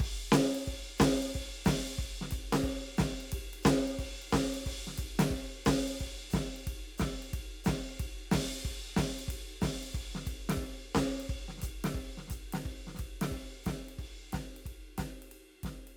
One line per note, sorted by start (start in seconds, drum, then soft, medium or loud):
0.00 kick medium
0.00 ride loud
0.31 snare loud
0.31 hi-hat pedal soft
0.31 ride medium
0.55 ride medium
0.66 kick medium
0.66 ride medium
0.98 kick medium
0.98 snare loud
0.98 hi-hat pedal medium
0.98 ride loud
1.22 ride medium
1.34 kick medium
1.34 ride medium
1.65 kick medium
1.65 snare loud
1.65 hi-hat pedal medium
1.65 ride loud
1.87 ride soft
1.98 kick medium
1.98 ride medium
2.21 snare medium
2.30 kick medium
2.30 hi-hat pedal medium
2.30 ride medium
2.52 snare loud
2.52 ride medium
2.63 kick medium
2.63 ride medium
2.98 kick medium
2.98 snare loud
2.98 hi-hat pedal medium
2.98 ride medium
3.20 ride soft
3.32 kick medium
3.32 ride loud
3.53 ride medium
3.63 kick medium
3.63 snare loud
3.63 hi-hat pedal medium
3.63 ride medium
3.88 ride soft
3.98 kick medium
3.98 ride medium
4.22 ride soft
4.30 kick medium
4.30 snare loud
4.30 hi-hat pedal soft
4.30 ride loud
4.54 ride medium
4.66 kick medium
4.66 ride medium
4.87 snare soft
4.97 kick medium
4.97 hi-hat pedal medium
4.97 ride medium
5.19 snare loud
5.19 ride loud
5.30 kick medium
5.30 ride medium
5.65 kick medium
5.65 snare loud
5.65 hi-hat pedal medium
5.65 ride loud
5.88 ride soft
5.99 kick medium
5.99 ride medium
6.30 kick medium
6.30 snare loud
6.30 hi-hat pedal medium
6.30 ride medium
6.56 ride soft
6.67 kick medium
6.67 ride medium
6.98 kick medium
6.98 snare medium
6.98 hi-hat pedal medium
6.98 ride medium
7.22 ride soft
7.33 kick medium
7.33 ride medium
7.64 kick medium
7.64 snare loud
7.64 hi-hat pedal medium
7.64 ride medium
7.89 ride soft
7.99 kick medium
7.99 ride medium
8.31 kick medium
8.31 snare loud
8.31 hi-hat pedal medium
8.31 ride loud
8.54 ride soft
8.65 kick medium
8.65 ride medium
8.96 kick medium
8.96 snare loud
8.96 hi-hat pedal medium
8.96 ride medium
9.19 ride medium
9.28 kick medium
9.28 ride medium
9.61 kick medium
9.61 snare loud
9.61 hi-hat pedal medium
9.61 ride medium
9.83 ride medium
9.92 kick medium
9.92 hi-hat pedal soft
9.92 ride medium
10.15 snare medium
10.26 kick medium
10.26 hi-hat pedal soft
10.26 ride medium
10.49 snare medium
10.49 ride loud
10.57 kick medium
10.62 ride medium
10.94 kick medium
10.94 snare loud
10.94 hi-hat pedal soft
10.94 ride medium
11.20 ride medium
11.29 kick medium
11.29 ride medium
11.48 snare soft
11.58 snare soft
11.62 kick medium
11.62 hi-hat pedal medium
11.62 ride medium
11.84 snare medium
11.84 ride medium
11.94 kick medium
11.94 ride medium
12.17 snare soft
12.28 kick soft
12.28 snare soft
12.28 hi-hat pedal medium
12.28 ride medium
12.53 snare medium
12.53 ride medium
12.64 kick soft
12.64 ride medium
12.87 snare soft
12.94 snare soft
12.94 hi-hat pedal soft
12.99 kick medium
12.99 ride medium
13.21 snare medium
13.21 ride loud
13.31 kick soft
13.31 ride medium
13.64 kick soft
13.64 snare medium
13.64 hi-hat pedal soft
13.64 ride medium
13.88 ride soft
13.98 kick soft
13.98 ride medium
14.32 kick soft
14.32 snare medium
14.32 hi-hat pedal soft
14.32 ride medium
14.56 ride soft
14.65 kick soft
14.65 ride medium
14.97 kick soft
14.97 snare medium
14.97 hi-hat pedal soft
14.97 ride medium
15.22 ride soft
15.31 ride medium
15.63 kick soft
15.63 snare medium
15.63 ride medium
15.87 ride soft